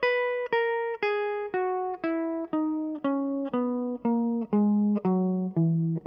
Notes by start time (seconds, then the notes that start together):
0.04 B4
0.53 A#4
1.03 G#4
1.55 F#4
2.04 E4
2.54 D#4
3.05 C#4
3.55 B3
4.06 A#3
4.54 G#3
5.06 F#3
5.58 E3